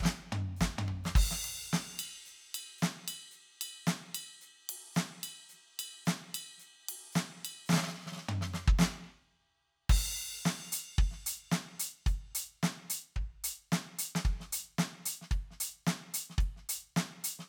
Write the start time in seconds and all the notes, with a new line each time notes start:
0.01 kick, snare
0.06 snare
0.33 high tom
0.57 hi-hat pedal
0.62 kick, snare
0.79 high tom
0.89 floor tom
1.05 snare, hi-hat pedal
1.16 kick, crash
1.32 snare
1.45 snare, ride, floor tom
1.64 hi-hat pedal
1.74 snare
2.00 ride bell
2.27 hi-hat pedal
2.55 ride bell
2.79 hi-hat pedal
2.83 snare
3.09 ride bell
3.32 hi-hat pedal
3.62 ride bell
3.88 snare, hi-hat pedal
4.15 ride bell
4.42 hi-hat pedal
4.70 ride
4.95 snare, hi-hat pedal
5.24 ride bell
5.50 snare, hi-hat pedal
5.80 ride bell
6.06 snare, hi-hat pedal
6.35 ride bell
6.58 snare, hi-hat pedal
6.61 snare
6.89 ride
7.13 snare, hi-hat pedal
7.46 ride bell
7.67 snare, hi-hat pedal
7.74 snare
7.77 snare
7.79 snare
7.83 snare
7.88 snare
7.94 snare
7.98 snare
8.01 snare
8.03 snare
8.05 snare
8.07 snare
8.13 snare
8.22 snare
8.29 high tom
8.42 snare
8.55 snare
8.69 kick
8.80 snare
8.82 snare
9.90 kick, crash
10.19 closed hi-hat
10.46 snare
10.73 closed hi-hat
10.99 kick, closed hi-hat
11.12 snare
11.27 closed hi-hat
11.52 snare
11.80 closed hi-hat
12.07 closed hi-hat, kick
12.36 closed hi-hat
12.64 snare
12.91 closed hi-hat
13.17 kick
13.45 closed hi-hat
13.73 snare
14.00 closed hi-hat
14.16 snare
14.26 kick, closed hi-hat
14.41 snare
14.53 closed hi-hat
14.79 snare
15.06 closed hi-hat
15.22 snare
15.32 kick, closed hi-hat
15.52 snare
15.61 closed hi-hat
15.87 snare
16.15 closed hi-hat
16.30 snare
16.39 kick, closed hi-hat
16.57 snare
16.70 closed hi-hat
16.97 snare
17.25 closed hi-hat
17.40 snare